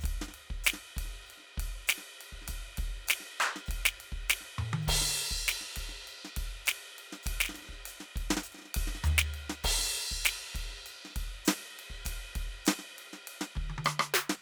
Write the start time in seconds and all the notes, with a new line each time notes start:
0.01 kick, hi-hat pedal
0.06 ride
0.11 kick
0.21 snare
0.28 snare
0.34 ride
0.50 kick
0.64 snare, hi-hat pedal, ride
0.73 snare
0.97 kick, ride
1.03 kick, snare
1.13 snare
1.21 snare
1.26 hi-hat pedal, ride
1.38 snare
1.40 snare
1.58 kick, ride
1.65 kick
1.88 snare, hi-hat pedal, ride
1.98 snare
2.21 ride
2.33 kick
2.42 snare
2.47 kick, snare, hi-hat pedal, ride
2.51 snare
2.60 kick
2.77 kick, ride
2.91 kick
3.08 snare, hi-hat pedal, ride
3.20 snare
3.40 percussion
3.56 snare
3.66 kick, hi-hat pedal
3.71 ride
3.75 kick
3.85 snare
4.00 ride
4.12 kick
4.29 snare, hi-hat pedal, ride
4.41 snare
4.58 mid tom
4.73 high tom
4.82 hi-hat pedal
4.88 kick, crash
4.94 kick
5.01 snare
5.08 snare
5.15 snare, ride
5.31 kick
5.48 snare, hi-hat pedal, ride
5.61 snare
5.76 kick, ride
5.89 snare
6.07 hi-hat pedal, ride
6.25 snare
6.37 kick, ride
6.43 kick
6.66 snare, hi-hat pedal, ride
6.98 ride
7.13 snare
7.23 kick, hi-hat pedal, ride
7.33 kick
7.36 kick
7.41 snare
7.45 snare
7.49 snare
7.54 snare, ride
7.59 snare
7.62 snare
7.67 kick, snare
7.73 snare
7.86 hi-hat pedal, ride
8.00 snare
8.16 kick, ride
8.22 kick
8.30 snare
8.37 snare
8.43 hi-hat pedal, ride
8.52 snare, ride
8.59 snare
8.62 snare
8.65 snare
8.71 snare, ride
8.77 kick
8.84 kick, snare
8.90 kick
8.95 snare
9.04 floor tom, hi-hat pedal
9.18 snare
9.34 ride
9.50 snare
9.63 kick, hi-hat pedal, crash
9.77 kick, snare
9.83 snare
9.86 snare
10.12 kick
10.25 snare, hi-hat pedal, ride
10.55 kick, ride
10.70 snare
10.86 hi-hat pedal, ride
11.05 snare
11.10 snare
11.16 kick, ride
11.23 kick
11.45 snare, hi-hat pedal, ride
11.79 ride
11.90 kick, snare
12.05 kick, hi-hat pedal, ride
12.36 kick, ride
12.47 kick
12.66 snare, hi-hat pedal, ride
12.79 snare
12.98 ride
13.13 snare
13.27 hi-hat pedal, ride
13.41 snare
13.55 kick, high tom
13.63 kick
13.70 high tom
13.78 high tom
13.85 cross-stick, hi-hat pedal
14.00 cross-stick
14.14 snare
14.30 snare